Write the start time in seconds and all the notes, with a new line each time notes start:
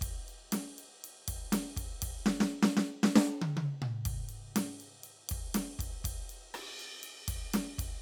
0.01 kick, ride
0.28 ride
0.52 snare, ride
0.78 ride
1.04 ride
1.28 kick, ride
1.52 snare, ride
1.76 kick, ride
2.02 kick, ride
2.26 snare
2.40 snare
2.63 snare
2.77 snare
3.03 snare
3.16 snare
3.42 high tom
3.57 high tom
3.82 mid tom
4.05 kick, ride
4.29 ride
4.56 snare, ride
4.80 ride
5.03 ride
5.29 kick, ride
5.54 snare, ride
5.79 kick, ride
6.04 kick, ride
6.29 ride
6.54 cross-stick, ride
6.79 ride
7.03 ride
7.28 kick, ride
7.54 snare, ride
7.78 kick, ride